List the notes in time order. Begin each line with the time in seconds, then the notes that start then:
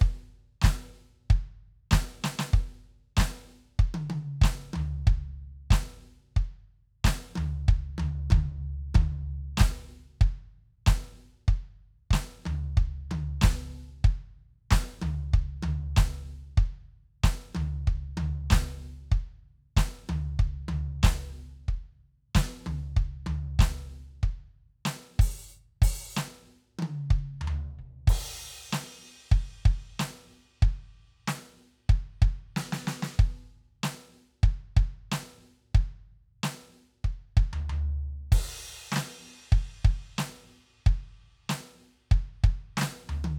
0.01 kick
0.62 kick, snare
0.65 snare
1.30 kick
1.91 kick, snare
1.93 snare
2.24 snare
2.39 snare
2.53 kick
3.17 kick, snare
3.20 snare
3.79 kick
3.94 high tom
4.10 high tom
4.42 kick, snare
4.73 floor tom, high tom
5.07 kick
5.71 kick, snare
6.36 kick
7.04 kick, snare
7.07 snare
7.36 floor tom, high tom
7.68 kick
7.98 floor tom, high tom
8.30 kick, floor tom, high tom
8.95 kick, floor tom, high tom
9.57 snare
9.60 kick, snare
10.21 kick
10.86 kick, snare
11.48 kick
12.11 kick, snare
12.46 floor tom, high tom
12.77 kick
13.11 floor tom, high tom
13.41 snare
13.43 kick, snare
14.04 kick
14.71 kick, snare
14.72 snare
15.02 floor tom, high tom
15.34 kick
15.63 floor tom, high tom
15.97 kick, snare
16.58 kick
17.24 kick, snare
17.55 floor tom, high tom
17.87 kick
18.17 floor tom, high tom
18.50 kick, snare
18.53 snare
19.12 kick
19.77 kick, snare
20.09 floor tom, high tom
20.39 kick
20.68 floor tom, high tom
21.03 kick, snare
21.05 snare
21.68 kick
22.35 kick, snare
22.66 floor tom, high tom
22.97 kick
23.26 floor tom, high tom
23.59 kick, snare
24.23 kick
24.85 snare
25.19 open hi-hat, kick
25.50 hi-hat pedal
25.82 open hi-hat, kick
26.14 snare, hi-hat pedal
26.79 high tom
26.82 high tom
27.11 kick
27.41 floor tom
27.47 floor tom
27.79 kick
28.08 kick, crash
28.73 snare
29.32 kick
29.65 kick
29.99 snare
30.62 kick
31.28 snare
31.89 kick
32.22 kick
32.56 snare
32.72 snare
32.87 snare
33.03 snare
33.19 kick
33.83 snare
34.43 kick
34.77 kick
35.12 snare
35.75 kick
36.43 snare
37.04 kick
37.37 kick
37.53 floor tom
37.70 floor tom
38.32 kick, crash
38.92 snare
38.96 snare
39.52 kick
39.85 kick
40.18 snare
40.86 kick
41.49 snare
42.11 kick
42.44 kick
42.77 snare
42.81 snare
43.09 floor tom
43.24 high tom